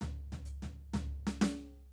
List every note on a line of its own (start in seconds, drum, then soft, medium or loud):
0.01 snare soft
0.01 floor tom medium
0.32 snare soft
0.32 floor tom medium
0.45 hi-hat pedal soft
0.62 snare soft
0.62 floor tom soft
0.94 snare medium
0.94 floor tom medium
1.27 snare medium
1.41 snare loud